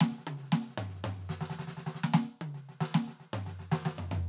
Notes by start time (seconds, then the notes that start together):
0.01 snare
0.12 snare
0.19 snare
0.28 high tom
0.38 snare
0.44 snare
0.53 snare
0.63 snare
0.70 snare
0.78 mid tom
0.89 snare
0.95 snare
1.05 mid tom
1.13 snare
1.19 snare
1.24 snare
1.30 snare
1.42 snare
1.51 snare
1.60 snare
1.68 snare
1.78 snare
1.87 snare
1.95 snare
2.04 snare
2.15 snare
2.42 closed hi-hat, high tom
2.55 snare
2.70 snare
2.81 snare
2.95 snare
3.08 snare
3.21 snare
3.34 mid tom
3.47 snare
3.60 snare
3.72 snare
3.86 snare
3.99 floor tom
4.12 floor tom